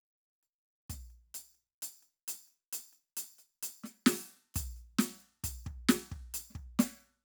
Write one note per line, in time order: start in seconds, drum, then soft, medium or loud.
0.43 percussion soft
0.89 kick soft
0.89 snare soft
0.89 percussion medium
1.10 percussion soft
1.34 percussion loud
1.54 percussion soft
1.82 percussion loud
2.02 percussion soft
2.28 percussion loud
2.47 percussion soft
2.73 percussion loud
2.93 percussion soft
3.17 percussion loud
3.38 percussion soft
3.63 percussion loud
3.83 snare soft
3.83 percussion medium
4.06 snare loud
4.06 percussion loud
4.54 kick medium
4.54 percussion medium
4.56 percussion loud
4.76 percussion soft
4.98 snare loud
4.98 percussion loud
5.19 percussion soft
5.44 kick medium
5.44 percussion loud
5.65 kick medium
5.65 percussion soft
5.89 snare loud
5.89 percussion loud
6.11 kick soft
6.34 percussion loud
6.50 snare soft
6.55 kick soft
6.55 percussion soft
6.79 snare loud
6.79 percussion loud
6.99 percussion soft